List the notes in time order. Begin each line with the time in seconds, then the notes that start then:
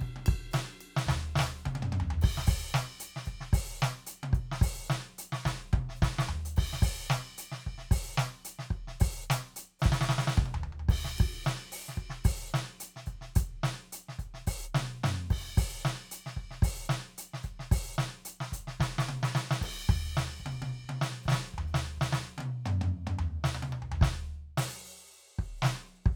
0.01 kick, ride
0.16 high tom
0.26 kick, ride bell
0.51 snare, hi-hat pedal, ride bell
0.81 ride bell
0.97 snare
1.07 kick, snare, floor tom
1.36 kick, snare
1.39 snare
1.58 hi-hat pedal
1.66 kick, high tom
1.75 high tom
1.82 mid tom
1.92 mid tom
2.00 floor tom
2.10 floor tom
2.22 kick, crash
2.37 snare
2.47 open hi-hat, kick
2.70 hi-hat pedal
2.74 snare
3.00 closed hi-hat
3.16 snare
3.25 closed hi-hat, kick
3.41 snare
3.53 open hi-hat, kick
3.79 snare, hi-hat pedal
4.07 closed hi-hat
4.23 high tom
4.33 kick, closed hi-hat
4.52 snare
4.61 open hi-hat, kick
4.87 snare, hi-hat pedal
5.18 closed hi-hat
5.32 snare
5.45 kick, snare
5.73 kick, high tom
5.89 snare
5.96 hi-hat pedal
6.02 kick, snare
6.19 snare
6.29 floor tom
6.45 closed hi-hat
6.57 kick, crash
6.73 snare
6.82 open hi-hat, kick
7.06 snare, hi-hat pedal
7.38 closed hi-hat
7.52 snare
7.64 kick, closed hi-hat
7.78 snare
7.91 open hi-hat, kick
8.15 snare, hi-hat pedal
8.45 closed hi-hat
8.59 snare
8.71 kick, closed hi-hat
8.88 snare
9.00 open hi-hat, kick
9.23 hi-hat pedal
9.30 closed hi-hat, snare
9.56 closed hi-hat
9.79 snare, hi-hat pedal
9.86 kick
10.01 snare
10.09 snare
10.18 snare
10.27 snare
10.34 kick, hi-hat pedal, high tom
10.46 high tom
10.54 floor tom
10.64 floor tom
10.72 floor tom
10.79 floor tom
10.89 kick, crash
11.05 snare
11.18 kick, ride
11.44 snare, hi-hat pedal
11.72 open hi-hat
11.89 snare, hi-hat pedal
11.95 closed hi-hat, kick
12.10 snare
12.24 open hi-hat, kick
12.50 hi-hat pedal
12.54 snare
12.80 closed hi-hat
12.96 snare
13.06 closed hi-hat, kick
13.21 snare
13.35 closed hi-hat, kick
13.64 snare
13.92 closed hi-hat
14.09 snare
14.19 closed hi-hat, kick
14.34 snare
14.47 open hi-hat, kick
14.65 hi-hat pedal
14.75 snare, high tom
15.04 snare, mid tom
15.30 kick, crash
15.41 snare
15.47 snare
15.57 open hi-hat, kick
15.82 snare, hi-hat pedal
16.11 closed hi-hat
16.26 snare
16.37 kick, closed hi-hat
16.51 snare
16.62 open hi-hat, kick
16.85 snare, hi-hat pedal
17.18 closed hi-hat
17.34 snare
17.43 closed hi-hat, kick
17.59 snare
17.72 open hi-hat, kick
17.95 snare, hi-hat pedal
18.25 closed hi-hat
18.40 snare
18.52 closed hi-hat, kick
18.67 snare
18.80 kick, snare, hi-hat pedal
18.99 snare, hi-hat pedal
19.09 high tom
19.17 hi-hat pedal
19.23 snare
19.35 snare
19.51 snare
19.62 kick, crash
19.89 kick, floor tom
20.14 snare, hi-hat pedal
20.37 kick, hi-hat pedal
20.46 high tom
20.51 hi-hat pedal
20.62 kick, hi-hat pedal, high tom
20.84 kick
20.89 high tom
21.01 snare
21.23 kick, hi-hat pedal
21.28 snare
21.32 snare
21.46 hi-hat pedal
21.54 kick
21.58 floor tom
21.67 hi-hat pedal
21.73 kick, snare
21.85 hi-hat pedal
21.97 kick, snare, hi-hat pedal
22.12 snare, hi-hat pedal
22.38 high tom
22.40 high tom
22.66 mid tom
22.81 mid tom
23.07 mid tom
23.19 floor tom
23.44 snare
23.55 high tom
23.63 high tom
23.72 high tom
23.82 floor tom
23.92 floor tom
24.01 kick, snare
24.58 open hi-hat, snare
25.39 kick
25.62 snare
25.65 snare
26.06 kick